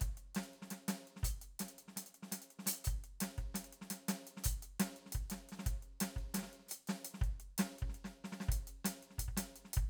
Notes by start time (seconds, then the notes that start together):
0.01 kick, closed hi-hat
0.17 closed hi-hat
0.35 snare, closed hi-hat
0.44 closed hi-hat
0.53 closed hi-hat
0.62 snare
0.71 snare, closed hi-hat
0.88 snare, closed hi-hat
1.07 closed hi-hat
1.16 snare
1.23 closed hi-hat, kick
1.42 closed hi-hat
1.59 snare, closed hi-hat
1.68 closed hi-hat
1.78 closed hi-hat
1.88 snare
1.96 snare, closed hi-hat
2.06 closed hi-hat
2.14 closed hi-hat
2.23 snare
2.32 snare, closed hi-hat
2.42 closed hi-hat
2.50 closed hi-hat
2.59 snare
2.66 closed hi-hat, snare
2.84 closed hi-hat, kick
3.04 closed hi-hat
3.21 snare, closed hi-hat
3.38 kick, closed hi-hat
3.54 snare, closed hi-hat
3.64 closed hi-hat
3.73 closed hi-hat
3.81 snare
3.90 snare, closed hi-hat
4.08 snare, closed hi-hat
4.27 closed hi-hat
4.37 snare
4.44 closed hi-hat, kick
4.62 closed hi-hat
4.80 snare, closed hi-hat
4.96 closed hi-hat
5.06 snare
5.12 kick, closed hi-hat
5.30 snare, closed hi-hat
5.49 snare, closed hi-hat
5.59 snare
5.63 kick, snare, closed hi-hat
5.82 closed hi-hat
6.00 snare, closed hi-hat
6.16 kick, closed hi-hat
6.34 snare, closed hi-hat
6.37 snare
6.43 snare
6.48 snare
6.53 open hi-hat
6.59 snare
6.66 snare, hi-hat pedal
6.71 closed hi-hat
6.87 snare, closed hi-hat
7.05 closed hi-hat
7.14 snare
7.21 kick, closed hi-hat
7.40 closed hi-hat
7.58 snare, closed hi-hat
7.79 kick, closed hi-hat
7.89 snare
7.94 closed hi-hat
8.04 snare
8.24 snare
8.32 snare
8.40 snare
8.48 kick, closed hi-hat
8.67 closed hi-hat
8.85 snare, closed hi-hat
9.03 closed hi-hat
9.10 snare
9.18 kick, closed hi-hat
9.28 kick
9.37 snare, closed hi-hat
9.56 closed hi-hat
9.65 snare
9.73 kick, closed hi-hat